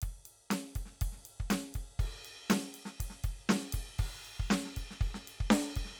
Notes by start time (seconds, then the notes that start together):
0.02 kick, ride
0.25 hi-hat pedal, ride
0.50 snare, ride
0.75 kick, ride
0.85 snare
0.92 snare
1.01 kick, ride
1.12 snare
1.18 snare
1.25 ride
1.40 kick
1.50 snare, ride
1.74 kick, ride
1.99 kick, ride
2.24 hi-hat pedal, ride
2.50 snare, ride
2.74 hi-hat pedal, ride
2.85 snare
3.00 kick, ride
3.10 snare
3.24 kick, ride
3.49 snare, ride
3.72 kick, hi-hat pedal, ride
3.99 kick, crash
4.25 ride
4.39 kick
4.50 snare, ride
4.65 snare
4.76 kick, ride
4.91 snare
5.01 kick, ride
5.14 snare
5.27 ride
5.40 kick
5.50 snare, ride
5.76 kick, ride
5.85 snare
5.89 snare
5.94 snare